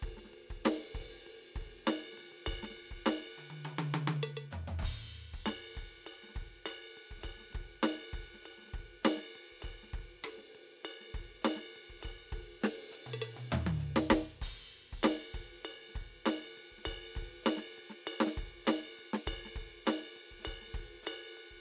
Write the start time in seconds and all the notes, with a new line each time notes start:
0.01 kick, hi-hat pedal, ride
0.09 kick
0.17 snare
0.24 snare
0.29 snare
0.33 ride
0.50 kick
0.64 snare, hi-hat pedal, ride
0.94 kick, ride
1.01 kick
1.27 ride
1.55 kick, ride
1.62 kick
1.85 snare, hi-hat pedal, ride bell
2.12 snare
2.18 snare, ride
2.23 snare
2.32 ride
2.46 kick, ride bell
2.53 kick
2.59 kick, snare
2.70 snare
2.77 ride
2.91 kick
3.06 snare, hi-hat pedal, ride bell
3.38 hi-hat pedal, high tom
3.50 high tom
3.65 hi-hat pedal, high tom
3.78 high tom
3.94 hi-hat pedal, high tom
4.07 high tom
4.22 hi-hat pedal, percussion
4.37 percussion
4.51 floor tom, hi-hat pedal
4.67 floor tom
4.79 kick, floor tom
4.83 hi-hat pedal, crash
4.97 kick
5.33 kick
5.46 snare, hi-hat pedal, ride bell
5.75 kick, ride
5.82 kick
6.05 hi-hat pedal, ride bell
6.23 snare
6.27 snare
6.29 snare
6.34 kick, snare, ride
6.42 kick
6.66 cross-stick, hi-hat pedal, ride bell
6.97 ride
7.11 kick
7.18 snare, hi-hat pedal
7.23 kick, ride bell
7.37 snare
7.40 snare
7.50 snare, ride
7.54 kick
7.82 snare, hi-hat pedal, ride bell
8.13 kick, ride
8.18 kick
8.34 snare
8.42 hi-hat pedal, ride bell
8.58 snare
8.62 snare
8.65 snare
8.67 snare
8.73 kick, ride
8.80 kick
9.03 snare, hi-hat pedal, ride bell
9.17 snare
9.35 ride
9.52 kick
9.61 kick, hi-hat pedal, ride bell
9.72 kick
9.83 snare
9.88 snare
9.93 kick, ride
10.00 kick
10.22 cross-stick, hi-hat pedal, ride
10.38 snare
10.55 ride
10.83 hi-hat pedal, ride bell
11.00 snare
11.05 snare
11.09 snare
11.14 kick, ride
11.21 kick
11.42 snare, hi-hat pedal, ride bell
11.56 snare
11.76 ride
11.89 kick
12.01 kick, hi-hat pedal, ride bell
12.11 kick
12.32 kick, ride
12.39 kick
12.61 snare, hi-hat pedal, ride
12.92 hi-hat pedal
13.06 mid tom
13.13 percussion
13.21 hi-hat pedal, percussion
13.33 mid tom, ride
13.50 hi-hat pedal, floor tom
13.66 high tom
13.79 hi-hat pedal
13.96 snare
14.10 kick, snare, hi-hat pedal
14.41 kick, hi-hat pedal, crash
14.48 kick
14.92 kick
15.03 snare, hi-hat pedal, ride bell
15.34 kick, ride
15.40 kick
15.62 hi-hat pedal, ride bell
15.88 snare
15.95 kick, ride
16.02 kick
16.25 snare, hi-hat pedal, ride bell
16.57 ride
16.71 kick
16.78 snare
16.84 kick, hi-hat pedal, ride bell
17.15 kick, ride
17.22 kick
17.43 snare, hi-hat pedal, ride bell
17.57 snare
17.78 ride
17.90 snare
18.05 hi-hat pedal, ride bell
18.20 snare
18.26 snare
18.37 kick, ride
18.48 kick
18.64 snare, hi-hat pedal, ride bell
18.98 ride
19.13 snare
19.27 kick, hi-hat pedal, ride bell
19.34 kick
19.45 snare
19.55 kick, ride
19.62 kick
19.85 snare, hi-hat pedal, ride bell
20.16 ride
20.31 kick
20.39 snare, hi-hat pedal
20.45 kick, ride bell
20.61 snare
20.67 snare
20.71 kick, snare, ride
20.80 kick
21.03 cross-stick, hi-hat pedal
21.07 ride bell
21.37 ride bell
21.51 kick